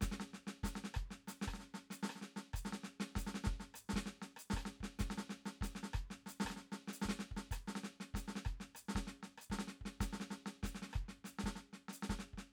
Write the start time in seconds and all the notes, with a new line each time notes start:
0.01 kick, snare, hi-hat pedal
0.12 snare
0.20 snare
0.33 snare
0.47 snare
0.63 kick, snare, hi-hat pedal
0.76 snare
0.84 snare
0.94 kick, cross-stick
1.11 snare
1.28 snare, hi-hat pedal
1.42 snare
1.47 kick, cross-stick
1.54 snare
1.59 snare
1.74 snare
1.90 snare, hi-hat pedal
2.03 snare
2.09 cross-stick
2.15 snare
2.21 snare
2.36 snare
2.54 kick, cross-stick, hi-hat pedal
2.65 snare
2.73 snare
2.84 snare
3.00 snare
3.15 kick, snare, hi-hat pedal
3.27 snare
3.34 snare
3.44 kick, snare
3.55 kick
3.60 snare
3.74 cross-stick, hi-hat pedal
3.89 snare
3.93 kick, snare
4.06 snare
4.22 snare
4.36 cross-stick, hi-hat pedal
4.50 kick, snare
4.57 cross-stick
4.60 cross-stick
4.65 snare
4.80 kick, snare
4.99 kick, snare, hi-hat pedal
5.08 kick, snare
5.18 snare
5.30 snare
5.46 snare
5.61 kick, snare, hi-hat pedal
5.75 snare
5.83 snare
5.93 kick, cross-stick
6.02 kick
6.10 snare
6.26 snare, hi-hat pedal
6.40 snare
6.45 kick, cross-stick
6.50 snare
6.56 snare
6.72 snare
6.88 snare
6.93 hi-hat pedal
7.02 kick, snare
7.09 snare
7.19 snare
7.31 kick
7.37 snare
7.51 kick, cross-stick, hi-hat pedal
7.68 snare
7.75 snare
7.84 snare
8.00 snare
8.14 kick, snare, hi-hat pedal
8.28 snare
8.36 snare
8.45 kick, cross-stick
8.60 snare
8.75 cross-stick, hi-hat pedal
8.89 snare
8.95 kick, snare
9.07 snare
9.23 snare
9.38 cross-stick, hi-hat pedal
9.50 kick, snare
9.59 snare
9.68 snare
9.81 kick
9.85 snare
10.01 kick, snare, hi-hat pedal
10.13 snare
10.20 snare
10.31 snare
10.46 snare
10.63 kick, snare, hi-hat pedal
10.75 snare
10.82 snare
10.89 snare
10.93 kick, cross-stick
11.03 kick
11.08 snare
11.24 snare, hi-hat pedal
11.39 snare
11.44 kick, snare
11.56 snare
11.73 snare
11.88 snare
11.93 hi-hat pedal
12.03 snare
12.09 kick, snare
12.19 snare
12.33 kick
12.38 snare